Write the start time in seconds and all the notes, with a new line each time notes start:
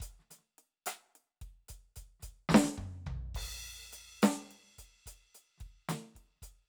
0.01 closed hi-hat, kick
0.20 snare
0.31 closed hi-hat, snare
0.39 snare
0.59 closed hi-hat
0.87 closed hi-hat, cross-stick
1.16 closed hi-hat
1.42 kick, closed hi-hat
1.69 closed hi-hat, kick
1.97 closed hi-hat, kick
2.03 kick
2.20 closed hi-hat, kick, snare
2.30 kick
2.50 kick, snare
2.55 snare
2.65 snare
2.78 kick, mid tom
2.84 kick
2.93 snare
3.07 kick, floor tom
3.13 kick
3.35 kick, crash
3.43 kick
3.93 closed hi-hat
4.23 closed hi-hat, snare
4.52 closed hi-hat
4.79 closed hi-hat, kick
5.07 closed hi-hat, kick
5.35 closed hi-hat
5.59 kick, snare, closed hi-hat
5.67 kick
5.90 closed hi-hat, snare
6.16 kick, closed hi-hat
6.36 snare
6.43 closed hi-hat, kick